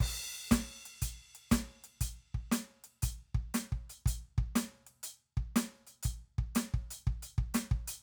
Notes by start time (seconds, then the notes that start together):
0.01 kick, crash
0.34 closed hi-hat
0.51 closed hi-hat, kick, snare
0.86 closed hi-hat
1.02 closed hi-hat, kick
1.35 closed hi-hat
1.50 closed hi-hat, kick, snare, hi-hat pedal
1.84 closed hi-hat
2.01 closed hi-hat, kick
2.35 kick
2.52 closed hi-hat, snare
2.84 closed hi-hat
3.03 closed hi-hat, kick
3.35 kick
3.54 closed hi-hat, snare
3.72 kick
3.90 closed hi-hat
4.06 closed hi-hat, kick
4.38 kick
4.56 closed hi-hat, snare
4.87 closed hi-hat
5.03 closed hi-hat
5.37 kick
5.56 closed hi-hat, snare
5.87 closed hi-hat
6.03 closed hi-hat, kick
6.39 kick
6.55 closed hi-hat, snare
6.74 kick
6.91 closed hi-hat
7.07 kick
7.23 closed hi-hat
7.38 kick
7.54 closed hi-hat, snare
7.72 kick
7.88 closed hi-hat